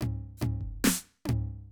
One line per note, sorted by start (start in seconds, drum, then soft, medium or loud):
0.02 floor tom loud
0.02 high tom medium
0.37 hi-hat pedal medium
0.41 floor tom loud
0.41 high tom loud
0.61 kick soft
0.84 snare loud
0.87 snare loud
1.25 closed hi-hat soft
1.25 floor tom loud
1.25 high tom loud